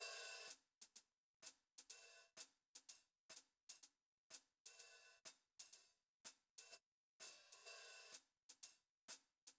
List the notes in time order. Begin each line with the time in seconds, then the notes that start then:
0.00 open hi-hat
0.47 closed hi-hat, hi-hat pedal
0.82 open hi-hat
0.96 open hi-hat
1.43 closed hi-hat, hi-hat pedal
1.78 closed hi-hat
1.90 open hi-hat
2.37 closed hi-hat, hi-hat pedal
2.75 open hi-hat
2.89 open hi-hat
3.30 hi-hat pedal
3.36 closed hi-hat
3.69 open hi-hat
3.83 open hi-hat
4.30 closed hi-hat, hi-hat pedal
4.66 open hi-hat
4.79 open hi-hat
5.25 closed hi-hat, hi-hat pedal
5.59 open hi-hat
5.73 open hi-hat
6.25 closed hi-hat, hi-hat pedal
6.58 open hi-hat
6.71 open hi-hat
7.20 open hi-hat, hi-hat pedal
7.52 open hi-hat
7.65 open hi-hat
8.12 closed hi-hat, hi-hat pedal
8.49 closed hi-hat
8.63 open hi-hat
9.09 closed hi-hat, hi-hat pedal
9.47 closed hi-hat